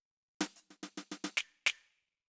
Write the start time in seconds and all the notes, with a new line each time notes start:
0.41 snare
0.56 hi-hat pedal
0.70 snare
0.83 snare
0.97 snare
1.11 snare
1.24 snare
1.37 snare
1.66 snare